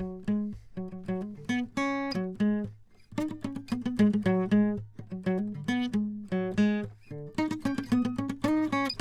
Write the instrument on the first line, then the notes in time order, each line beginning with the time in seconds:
acoustic guitar
0.01 F#3
0.29 G#3
0.78 F#3
0.94 F#3
1.09 F#3
1.23 G#3
1.50 B3
1.78 C#4
2.16 F#3
2.41 G#3
3.19 D#4
3.30 D#4
3.45 C#4
3.57 C#4
3.73 B3
3.87 B3
4.00 G#3
4.15 G#3
4.26 F#3
4.52 G#3
5.13 F#3
5.27 F#3
5.39 G#3
5.57 D3
5.69 B3
5.94 G#3
6.33 F#3
6.59 G#3
7.12 D3
7.39 D#4
7.52 D#4
7.66 C#4
7.79 C#4
7.93 B3
8.06 B3
8.19 C#4
8.30 C#4
8.45 D#4
8.74 C#4